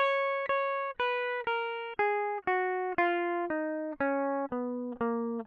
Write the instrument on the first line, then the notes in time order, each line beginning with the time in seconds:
electric guitar
0.00 C#5
0.50 C#5
1.00 B4
1.47 A#4
1.99 G#4
2.48 F#4
2.99 F4
3.51 D#4
4.01 C#4
4.53 B3
5.01 A#3